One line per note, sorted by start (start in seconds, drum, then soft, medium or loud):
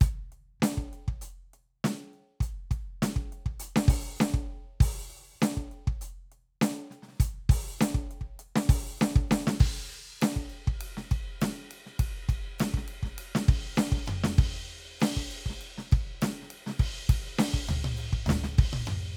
0.01 open hi-hat loud
0.01 kick loud
0.01 hi-hat pedal medium
0.33 closed hi-hat soft
0.60 closed hi-hat loud
0.60 kick soft
0.60 snare loud
0.78 kick medium
0.94 closed hi-hat soft
1.08 kick medium
1.22 closed hi-hat medium
1.54 closed hi-hat soft
1.85 closed hi-hat medium
1.85 snare loud
2.14 closed hi-hat soft
2.41 closed hi-hat medium
2.41 kick medium
2.71 kick medium
2.71 closed hi-hat medium
3.03 closed hi-hat loud
3.03 snare loud
3.17 kick medium
3.33 closed hi-hat soft
3.46 kick medium
3.60 closed hi-hat loud
3.76 snare loud
3.89 open hi-hat loud
3.89 kick loud
4.19 snare loud
4.19 hi-hat pedal medium
4.34 kick medium
4.81 open hi-hat loud
4.81 kick loud
5.36 kick soft
5.41 closed hi-hat loud
5.41 snare loud
5.41 hi-hat pedal soft
5.58 kick medium
5.72 closed hi-hat soft
5.88 kick medium
6.02 closed hi-hat medium
6.32 closed hi-hat soft
6.62 closed hi-hat loud
6.62 snare loud
6.91 snare soft
6.91 closed hi-hat soft
7.03 snare soft
7.08 snare soft
7.17 closed hi-hat loud
7.17 kick loud
7.17 snare soft
7.50 open hi-hat loud
7.50 kick loud
7.79 closed hi-hat loud
7.79 snare loud
7.79 hi-hat pedal soft
7.95 kick medium
8.11 closed hi-hat soft
8.21 kick soft
8.40 closed hi-hat medium
8.56 snare loud
8.70 open hi-hat loud
8.70 kick loud
9.01 snare loud
9.01 hi-hat pedal medium
9.16 kick loud
9.29 snare loud
9.29 hi-hat pedal soft
9.47 snare loud
9.60 kick loud
9.60 crash loud
9.87 hi-hat pedal soft
10.21 snare loud
10.21 hi-hat pedal medium
10.21 ride loud
10.37 kick medium
10.50 hi-hat pedal soft
10.50 ride soft
10.68 kick medium
10.80 hi-hat pedal soft
10.80 ride loud
10.97 snare medium
11.12 kick medium
11.12 ride bell medium
11.41 snare loud
11.41 hi-hat pedal medium
11.41 ride loud
11.71 ride loud
11.87 snare soft
11.92 snare soft
11.99 kick medium
11.99 hi-hat pedal soft
11.99 ride loud
12.29 kick medium
12.29 ride bell medium
12.59 snare loud
12.59 hi-hat pedal medium
12.59 ride loud
12.74 kick medium
12.74 snare soft
12.88 hi-hat pedal soft
12.88 ride medium
13.03 kick medium
13.03 snare soft
13.18 hi-hat pedal medium
13.18 ride loud
13.36 snare loud
13.49 kick loud
13.49 ride medium
13.76 snare loud
13.76 hi-hat pedal medium
13.76 ride medium
13.92 kick medium
13.97 snare soft
14.06 hi-hat pedal medium
14.06 mid tom loud
14.24 snare loud
14.38 kick loud
14.38 ride loud
15.00 snare loud
15.00 hi-hat pedal medium
15.00 ride loud
15.17 kick medium
15.30 hi-hat pedal soft
15.30 ride medium
15.46 kick medium
15.46 snare soft
15.61 hi-hat pedal soft
15.61 ride medium
15.78 snare medium
15.92 kick loud
15.92 ride bell medium
16.22 snare loud
16.22 hi-hat pedal medium
16.22 ride loud
16.43 snare soft
16.50 hi-hat pedal soft
16.50 ride loud
16.67 snare medium
16.70 snare medium
16.73 snare soft
16.79 kick loud
16.79 hi-hat pedal soft
16.79 ride loud
17.10 kick loud
17.10 ride loud
17.39 snare loud
17.39 hi-hat pedal medium
17.39 ride loud
17.54 kick medium
17.68 floor tom loud
17.68 hi-hat pedal medium
17.85 high tom loud
17.97 hi-hat pedal medium
17.97 ride medium
18.13 kick medium
18.27 snare loud
18.27 floor tom loud
18.27 hi-hat pedal medium
18.44 snare medium
18.57 kick loud
18.57 hi-hat pedal soft
18.57 ride loud
18.73 high tom loud
18.86 hi-hat pedal medium
18.86 mid tom loud